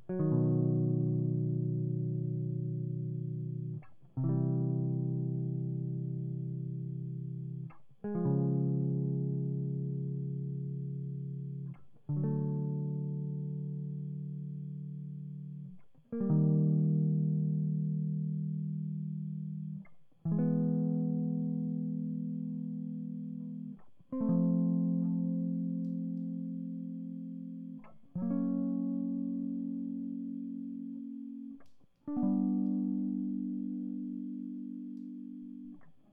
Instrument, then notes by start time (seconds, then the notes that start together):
electric guitar
0.10 F#3
0.21 D#3
0.33 B2
4.18 C3
4.25 E3
4.30 G3
8.05 G#3
8.16 F3
8.27 C#3
12.10 D3
12.18 F#3
12.24 A3
16.13 A#3
16.21 G3
16.31 D#3
20.26 E3
20.32 G#3
20.39 B3
24.13 C4
24.21 A3
24.30 F3
28.17 F3
28.22 F#3 A#3
28.31 C#4
32.08 D4
32.17 B3
32.24 G3